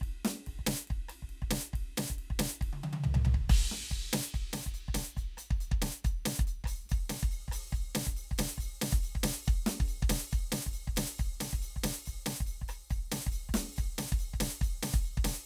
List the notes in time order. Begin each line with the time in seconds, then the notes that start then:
0.01 kick, snare, ride
0.25 snare, ride
0.46 kick, ride
0.59 kick
0.66 snare, ride
0.75 snare
0.86 snare, ride
0.90 kick
1.08 cross-stick, ride
1.22 kick, snare
1.29 ride
1.42 kick
1.51 snare, ride
1.73 kick, snare, ride
1.97 snare, ride
2.10 kick, snare
2.18 ride
2.30 kick
2.39 snare, ride
2.54 snare
2.61 kick, ride
2.73 high tom
2.83 high tom
2.93 high tom
3.04 floor tom
3.14 floor tom
3.25 floor tom
3.34 kick
3.49 kick, crash
3.71 snare
3.91 closed hi-hat, kick
4.13 closed hi-hat, snare
4.34 closed hi-hat, kick
4.53 closed hi-hat, snare
4.66 kick, snare
4.74 closed hi-hat
4.88 kick
4.94 closed hi-hat, snare
5.14 closed hi-hat, kick, snare
5.37 closed hi-hat, cross-stick
5.50 kick
5.56 snare
5.60 closed hi-hat
5.71 kick
5.82 closed hi-hat, snare
6.02 closed hi-hat, kick, snare
6.25 closed hi-hat, snare
6.38 kick, snare
6.47 closed hi-hat
6.64 kick, cross-stick, percussion
6.85 snare
6.89 kick, percussion
7.09 snare, percussion
7.23 kick, snare
7.31 percussion
7.48 kick, cross-stick
7.52 percussion
7.70 kick, snare
7.75 percussion
7.95 snare, percussion
8.06 kick
8.16 percussion
8.31 kick
8.38 snare, percussion
8.58 kick, snare, percussion
8.81 snare, percussion
8.92 kick
8.96 snare
9.03 percussion
9.15 kick
9.23 snare, percussion
9.44 kick, snare, percussion
9.66 snare, percussion
9.80 kick
9.88 percussion
10.02 kick
10.09 snare, percussion
10.31 kick, percussion
10.52 snare, percussion
10.66 kick
10.71 snare, percussion
10.87 kick
10.96 snare, percussion
11.18 kick, percussion
11.40 snare, percussion
11.53 kick
11.60 snare, percussion
11.76 kick
11.83 snare, percussion
12.04 kick, snare, percussion
12.26 snare, percussion
12.40 kick
12.46 percussion
12.61 kick
12.68 cross-stick, percussion
12.90 kick, percussion
13.11 snare, percussion
13.25 kick, snare
13.32 percussion
13.49 kick
13.54 snare, percussion
13.76 kick, snare, percussion
13.98 snare, percussion
14.12 kick
14.19 percussion
14.33 kick
14.40 snare, percussion
14.61 kick, percussion
14.83 snare, percussion
14.94 kick, snare
15.04 percussion
15.17 kick
15.24 snare, percussion